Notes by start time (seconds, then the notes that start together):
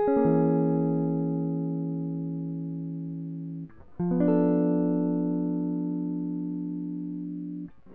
0.00 G#4
0.08 C#4
0.17 A#3
0.26 E3
4.01 F3
4.12 B3
4.21 D4
4.29 A4